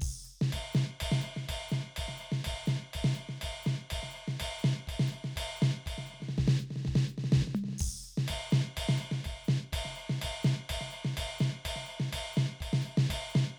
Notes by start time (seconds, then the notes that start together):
0.01 kick, crash
0.08 kick
0.24 hi-hat pedal
0.42 snare
0.53 kick, ride bell
0.59 kick
0.73 snare, hi-hat pedal
1.01 kick, ride bell
1.08 kick
1.12 snare
1.21 hi-hat pedal, ride
1.37 snare
1.49 kick, ride bell
1.55 kick
1.69 snare, hi-hat pedal
1.97 kick, ride bell
2.04 kick
2.09 snare
2.17 hi-hat pedal
2.21 ride
2.32 snare
2.45 kick, ride bell
2.53 kick
2.66 snare, hi-hat pedal
2.94 kick, ride bell
3.05 snare
3.14 hi-hat pedal, ride
3.29 snare
3.42 kick, ride bell
3.49 kick
3.63 hi-hat pedal
3.67 snare
3.91 kick, ride bell
3.98 kick
4.03 snare
4.11 hi-hat pedal
4.16 ride
4.28 snare
4.40 kick, ride bell
4.59 hi-hat pedal
4.64 snare
4.88 kick, ride
5.00 snare
5.07 hi-hat pedal
5.12 ride
5.24 snare
5.36 kick, ride bell
5.56 hi-hat pedal
5.62 snare
5.86 kick, ride bell
5.98 snare
6.06 hi-hat pedal
6.14 snare
6.20 snare
6.22 snare
6.29 snare
6.38 kick, snare
6.45 kick, snare
6.59 snare, hi-hat pedal
6.71 snare
6.76 snare
6.81 snare
6.85 kick, snare
6.96 snare
7.09 snare, hi-hat pedal
7.18 snare
7.24 snare
7.30 snare
7.32 kick, snare
7.42 kick, snare
7.48 snare
7.55 hi-hat pedal, mid tom
7.64 snare
7.69 snare
7.73 snare
7.79 kick, crash
7.87 kick
7.93 kick
8.03 hi-hat pedal
8.18 snare
8.28 kick, ride bell
8.50 snare, hi-hat pedal
8.77 kick, ride bell
8.89 snare
8.97 hi-hat pedal
9.02 ride
9.12 snare
9.25 kick, ride bell
9.45 hi-hat pedal
9.49 snare
9.73 kick, ride bell
9.85 snare
9.95 hi-hat pedal
9.99 ride
10.10 snare
10.22 kick, ride bell
10.43 snare, hi-hat pedal
10.70 kick, ride bell
10.76 kick
10.81 snare
10.90 hi-hat pedal, ride
11.05 snare
11.17 kick, ride bell
11.38 snare, hi-hat pedal
11.65 kick, ride bell
11.71 kick
11.76 snare
11.85 hi-hat pedal
11.90 ride
12.00 snare
12.13 kick, ride bell
12.19 kick
12.33 hi-hat pedal
12.37 snare
12.61 kick, ride bell
12.66 kick
12.73 snare
12.82 hi-hat pedal
12.86 ride
12.98 snare
13.10 kick, ride bell
13.16 kick
13.30 hi-hat pedal
13.35 snare